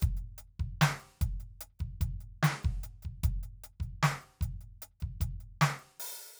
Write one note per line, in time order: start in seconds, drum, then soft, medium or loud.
0.01 kick medium
0.01 closed hi-hat loud
0.01 hi-hat pedal medium
0.17 closed hi-hat soft
0.38 closed hi-hat medium
0.60 kick medium
0.60 closed hi-hat soft
0.81 closed hi-hat loud
0.81 snare loud
1.00 closed hi-hat soft
1.21 kick medium
1.21 closed hi-hat loud
1.40 closed hi-hat soft
1.61 closed hi-hat loud
1.79 kick soft
1.79 closed hi-hat soft
2.01 kick medium
2.01 closed hi-hat loud
2.21 closed hi-hat soft
2.43 closed hi-hat loud
2.43 snare loud
2.63 kick medium
2.63 closed hi-hat soft
2.83 closed hi-hat medium
3.02 kick soft
3.02 closed hi-hat soft
3.24 kick medium
3.24 closed hi-hat loud
3.43 closed hi-hat medium
3.64 closed hi-hat loud
3.80 kick soft
3.80 closed hi-hat soft
4.03 closed hi-hat medium
4.03 snare loud
4.21 closed hi-hat soft
4.41 kick medium
4.41 closed hi-hat medium
4.61 closed hi-hat soft
4.82 closed hi-hat loud
5.00 kick soft
5.00 closed hi-hat soft
5.21 closed hi-hat loud
5.21 kick medium
5.40 closed hi-hat soft
5.61 closed hi-hat loud
5.61 snare loud
5.79 closed hi-hat soft
6.00 open hi-hat loud